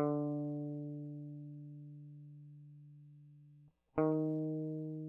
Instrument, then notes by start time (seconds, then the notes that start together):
electric guitar
0.00 D3
3.99 D#3